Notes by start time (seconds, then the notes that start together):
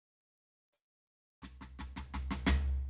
0.73 hi-hat pedal
1.42 snare, floor tom
1.61 snare, floor tom
1.79 snare, floor tom
1.96 snare, floor tom
2.14 snare, floor tom
2.31 snare, floor tom
2.47 snare, floor tom